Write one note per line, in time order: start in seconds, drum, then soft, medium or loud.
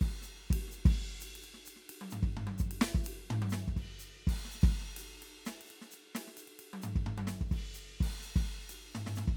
0.01 kick medium
0.01 crash medium
0.22 snare soft
0.22 hi-hat pedal medium
0.50 kick medium
0.50 ride loud
0.67 snare soft
0.67 hi-hat pedal medium
0.77 snare soft
0.85 kick loud
0.85 ride medium
1.20 hi-hat pedal medium
1.20 ride medium
1.35 ride medium
1.42 hi-hat pedal soft
1.42 ride soft
1.54 snare soft
1.65 hi-hat pedal medium
1.65 ride medium
1.76 snare soft
1.89 ride medium
2.01 high tom medium
2.10 floor tom medium
2.10 hi-hat pedal medium
2.23 kick medium
2.31 hi-hat pedal soft
2.37 floor tom medium
2.47 high tom medium
2.58 kick medium
2.58 hi-hat pedal medium
2.71 ride medium
2.81 snare loud
2.95 kick medium
3.04 hi-hat pedal medium
3.04 ride medium
3.19 high tom soft
3.30 floor tom loud
3.42 high tom medium
3.49 snare medium
3.49 hi-hat pedal medium
3.68 kick medium
3.76 kick medium
3.76 crash medium
3.76 ride soft
3.99 hi-hat pedal medium
4.04 ride soft
4.27 kick medium
4.27 crash medium
4.45 snare soft
4.50 hi-hat pedal medium
4.55 snare soft
4.61 kick loud
4.61 crash medium
4.72 hi-hat pedal soft
4.81 snare soft
4.96 hi-hat pedal medium
4.96 ride medium
5.19 hi-hat pedal soft
5.19 ride medium
5.45 snare medium
5.45 hi-hat pedal medium
5.45 ride soft
5.61 ride medium
5.66 hi-hat pedal soft
5.70 ride medium
5.81 snare soft
5.91 hi-hat pedal medium
5.91 ride soft
6.15 snare medium
6.15 ride medium
6.27 snare soft
6.37 hi-hat pedal medium
6.37 ride medium
6.47 ride soft
6.59 ride medium
6.73 high tom medium
6.82 floor tom medium
6.82 hi-hat pedal medium
6.96 kick medium
7.06 floor tom loud
7.18 high tom medium
7.27 snare medium
7.27 hi-hat pedal medium
7.41 kick medium
7.48 kick medium
7.48 hi-hat pedal soft
7.52 crash medium
7.52 ride medium
7.74 hi-hat pedal medium
7.78 ride bell soft
8.00 kick medium
8.00 crash medium
8.19 snare soft
8.19 hi-hat pedal medium
8.26 snare soft
8.36 kick medium
8.36 crash medium
8.58 snare soft
8.69 hi-hat pedal medium
8.69 ride medium
8.91 snare medium
8.91 hi-hat pedal soft
8.95 floor tom medium
9.06 snare medium
9.06 floor tom medium
9.15 snare soft
9.15 floor tom medium
9.15 hi-hat pedal medium
9.28 kick medium